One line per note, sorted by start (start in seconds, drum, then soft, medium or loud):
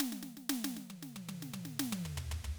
0.00 snare medium
0.12 snare soft
0.23 snare soft
0.37 snare soft
0.49 snare medium
0.64 snare medium
0.76 snare soft
0.90 high tom soft
1.03 snare soft
1.16 high tom medium
1.29 high tom medium
1.42 snare soft
1.53 high tom medium
1.65 snare soft
1.79 snare medium
1.92 high tom medium
2.05 floor tom medium
2.17 floor tom medium
2.31 floor tom medium
2.44 floor tom medium